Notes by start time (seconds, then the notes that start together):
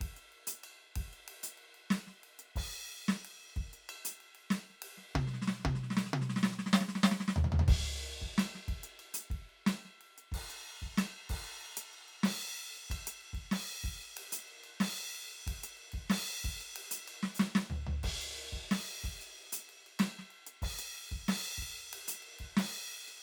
0.01 kick, ride
0.17 closed hi-hat
0.33 ride
0.47 closed hi-hat
0.64 ride bell
0.96 kick, ride
1.13 closed hi-hat
1.28 ride
1.44 closed hi-hat
1.58 ride
1.75 ride
1.91 snare, ride
2.07 snare
2.24 ride
2.39 closed hi-hat
2.56 kick, crash
2.74 closed hi-hat
2.89 ride
3.09 snare
3.25 ride
3.44 closed hi-hat
3.57 kick, ride
3.74 closed hi-hat
3.90 ride bell
4.05 closed hi-hat
4.21 ride
4.35 ride
4.51 snare, ride bell
4.70 snare
4.82 ride
4.98 snare
5.15 kick, high tom
5.27 snare
5.34 snare
5.42 snare
5.48 snare
5.60 snare
5.65 kick, high tom
5.75 snare
5.84 snare
5.91 snare
5.97 snare
6.06 snare
6.14 high tom
6.22 snare
6.30 snare
6.37 snare
6.43 snare
6.52 snare
6.57 kick, snare
6.67 snare
6.73 snare
6.81 snare
6.89 snare
6.96 snare
7.04 snare
7.12 snare
7.21 snare
7.28 snare
7.36 floor tom
7.45 floor tom
7.52 floor tom
7.60 floor tom
7.68 kick, ride
8.22 kick
8.38 snare, ride bell
8.55 snare
8.68 kick, ride
8.84 closed hi-hat
9.00 ride bell
9.14 closed hi-hat
9.31 kick, ride
9.50 ride
9.67 snare, ride bell
9.85 snare
10.01 ride
10.18 closed hi-hat
10.32 kick, crash
10.50 closed hi-hat
10.65 ride
10.81 kick, ride
10.98 snare, ride bell
11.30 kick, crash
11.45 closed hi-hat
11.62 ride
11.77 closed hi-hat
11.94 ride bell
12.09 ride bell
12.24 snare, crash
12.60 ride
12.76 closed hi-hat
12.90 kick, ride bell
13.07 closed hi-hat
13.22 closed hi-hat, ride
13.34 kick, ride
13.52 snare, crash
13.84 kick, ride
14.02 closed hi-hat
14.17 ride
14.33 closed hi-hat
14.48 ride
14.64 ride bell
14.81 snare, crash
15.15 ride
15.33 closed hi-hat
15.47 kick, ride
15.64 closed hi-hat
15.78 ride
15.92 kick, ride
16.10 snare, crash
16.45 kick, ride bell
16.61 closed hi-hat
16.76 ride
16.91 closed hi-hat
17.08 ride bell
17.23 snare
17.35 hi-hat pedal
17.40 snare
17.56 snare
17.70 floor tom
17.87 floor tom
18.04 kick, ride
18.21 closed hi-hat
18.37 ride
18.52 kick, ride bell
18.72 snare, crash
19.04 kick, ride bell
19.21 closed hi-hat
19.38 ride
19.53 closed hi-hat
19.69 ride
19.87 ride bell
20.00 snare, ride bell
20.19 snare
20.31 ride
20.47 closed hi-hat
20.62 kick, crash
20.79 closed hi-hat
20.95 ride bell
21.10 kick, floor tom, ride
21.29 snare, crash
21.58 kick, ride
21.62 cross-stick, floor tom
21.78 closed hi-hat
21.93 ride
22.08 closed hi-hat
22.23 ride
22.39 kick, ride
22.57 snare, crash
22.93 ride
23.08 closed hi-hat